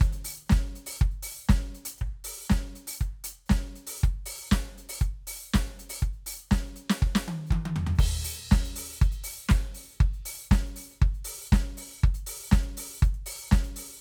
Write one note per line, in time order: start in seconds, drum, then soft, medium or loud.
0.01 closed hi-hat medium
0.01 kick loud
0.13 closed hi-hat medium
0.25 open hi-hat loud
0.46 snare loud
0.46 hi-hat pedal soft
0.52 kick loud
0.63 closed hi-hat soft
0.76 closed hi-hat medium
0.86 open hi-hat loud
0.96 hi-hat pedal soft
1.00 kick loud
1.00 closed hi-hat soft
1.11 closed hi-hat soft
1.23 open hi-hat loud
1.45 snare loud
1.45 hi-hat pedal soft
1.50 kick loud
1.75 closed hi-hat soft
1.85 closed hi-hat loud
1.97 closed hi-hat medium
1.97 hi-hat pedal soft
2.01 kick medium
2.24 open hi-hat loud
2.46 snare loud
2.46 hi-hat pedal soft
2.52 kick loud
2.74 closed hi-hat medium
2.74 kick soft
2.87 open hi-hat loud
2.96 closed hi-hat soft
2.96 hi-hat pedal soft
3.01 kick medium
3.09 closed hi-hat soft
3.24 open hi-hat loud
3.41 open hi-hat soft
3.46 snare loud
3.46 hi-hat pedal soft
3.51 kick loud
3.65 closed hi-hat soft
3.76 closed hi-hat soft
3.87 open hi-hat loud
4.00 kick loud
4.00 closed hi-hat soft
4.00 hi-hat pedal soft
4.14 closed hi-hat soft
4.26 open hi-hat loud
4.42 open hi-hat soft
4.48 snare loud
4.48 hi-hat pedal soft
4.52 kick medium
4.78 closed hi-hat soft
4.89 open hi-hat loud
4.98 kick medium
4.98 hi-hat pedal soft
5.03 closed hi-hat soft
5.14 closed hi-hat soft
5.22 kick soft
5.27 open hi-hat loud
5.50 snare loud
5.50 hi-hat pedal soft
5.55 kick medium
5.79 open hi-hat medium
5.90 open hi-hat loud
5.98 closed hi-hat soft
5.98 hi-hat pedal soft
6.02 kick medium
6.13 closed hi-hat soft
6.26 open hi-hat loud
6.48 kick loud
6.48 snare loud
6.48 hi-hat pedal soft
6.66 closed hi-hat soft
6.72 open hi-hat medium
6.72 kick soft
6.90 snare loud
6.97 hi-hat pedal soft
7.02 kick loud
7.15 snare loud
7.28 high tom loud
7.47 hi-hat pedal soft
7.51 kick medium
7.51 high tom loud
7.66 high tom loud
7.76 floor tom loud
7.87 floor tom loud
7.95 kick loud
7.95 hi-hat pedal soft
7.99 crash loud
8.24 open hi-hat loud
8.48 kick loud
8.48 snare loud
8.48 hi-hat pedal soft
8.65 closed hi-hat medium
8.76 open hi-hat loud
8.91 open hi-hat soft
8.96 hi-hat pedal soft
9.01 closed hi-hat soft
9.01 kick loud
9.12 closed hi-hat soft
9.24 open hi-hat loud
9.46 snare loud
9.46 hi-hat pedal soft
9.51 kick loud
9.65 closed hi-hat soft
9.72 open hi-hat medium
9.72 kick soft
9.90 open hi-hat soft
9.95 hi-hat pedal soft
10.00 kick loud
10.00 closed hi-hat soft
10.13 closed hi-hat soft
10.26 open hi-hat loud
10.38 open hi-hat soft
10.46 hi-hat pedal soft
10.51 kick loud
10.51 snare loud
10.66 closed hi-hat soft
10.76 open hi-hat medium
10.90 open hi-hat soft
10.95 hi-hat pedal soft
11.02 kick loud
11.02 closed hi-hat soft
11.14 closed hi-hat soft
11.25 open hi-hat loud
11.40 open hi-hat soft
11.47 hi-hat pedal soft
11.52 kick loud
11.52 snare loud
11.77 open hi-hat loud
11.93 open hi-hat soft
11.99 hi-hat pedal soft
12.04 kick loud
12.04 closed hi-hat soft
12.14 closed hi-hat soft
12.27 open hi-hat loud
12.42 open hi-hat medium
12.48 snare loud
12.48 hi-hat pedal soft
12.53 kick loud
12.64 closed hi-hat soft
12.77 open hi-hat loud
12.91 open hi-hat medium
12.98 hi-hat pedal soft
13.02 closed hi-hat soft
13.02 kick loud
13.14 closed hi-hat soft
13.26 open hi-hat loud
13.43 open hi-hat soft
13.48 snare loud
13.48 hi-hat pedal soft
13.53 kick loud
13.64 closed hi-hat soft
13.72 open hi-hat loud
13.72 kick soft
13.89 open hi-hat soft
13.97 hi-hat pedal soft